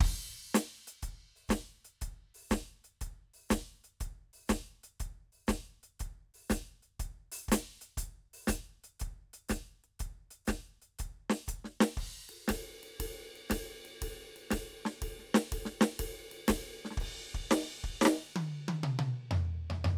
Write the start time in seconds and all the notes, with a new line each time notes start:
0.01 kick, crash
0.55 closed hi-hat, snare
0.88 closed hi-hat
1.03 closed hi-hat, kick
1.36 open hi-hat
1.49 closed hi-hat, kick, snare, hi-hat pedal
1.85 closed hi-hat
2.02 closed hi-hat, kick
2.35 open hi-hat
2.51 closed hi-hat, kick, snare, hi-hat pedal
2.85 closed hi-hat
3.01 closed hi-hat, kick
3.34 open hi-hat
3.50 closed hi-hat, kick, snare, hi-hat pedal
3.84 closed hi-hat
4.01 closed hi-hat, kick
4.34 open hi-hat
4.48 closed hi-hat, kick, snare, hi-hat pedal
4.84 closed hi-hat
5.00 closed hi-hat, kick
5.33 open hi-hat
5.47 closed hi-hat, kick, snare, hi-hat pedal
5.84 closed hi-hat
6.00 closed hi-hat, kick
6.35 open hi-hat
6.50 open hi-hat, kick, snare, hi-hat pedal
6.83 closed hi-hat
7.00 closed hi-hat, kick
7.32 open hi-hat
7.49 closed hi-hat, kick, snare, hi-hat pedal
7.82 closed hi-hat
7.98 closed hi-hat, kick
8.34 open hi-hat
8.48 open hi-hat, kick, snare, hi-hat pedal
8.84 closed hi-hat
9.00 closed hi-hat, kick
9.34 open hi-hat
9.49 open hi-hat, kick, snare, hi-hat pedal
9.84 closed hi-hat
10.00 closed hi-hat, kick
10.31 closed hi-hat
10.46 closed hi-hat, kick, snare, hi-hat pedal
10.82 closed hi-hat
10.99 closed hi-hat, kick
11.30 snare
11.47 kick, closed hi-hat, hi-hat pedal
11.65 snare
11.81 snare
11.97 kick, crash
12.30 ride
12.47 kick, snare, hi-hat pedal, ride
12.84 ride
13.00 kick, ride
13.36 ride
13.49 kick, snare, hi-hat pedal, ride
13.86 ride
14.02 kick, ride
14.37 ride
14.51 kick, snare, hi-hat pedal, ride
14.86 snare
15.02 kick, ride
15.19 snare
15.35 snare
15.53 kick, ride
15.66 snare
15.81 snare
16.00 kick, ride
16.32 ride
16.47 kick, snare, hi-hat pedal, ride
16.85 snare
16.91 snare
16.98 kick, snare, ride
17.35 kick
17.51 snare, ride
17.84 kick
18.02 snare
18.06 snare
18.36 high tom
18.69 high tom
18.84 mid tom
18.99 mid tom
19.31 floor tom
19.71 floor tom
19.85 floor tom